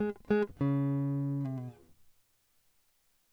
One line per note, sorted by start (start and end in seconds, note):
0.03 0.15 G#3
0.33 0.49 G#3
0.63 1.48 C#3
1.48 1.61 C3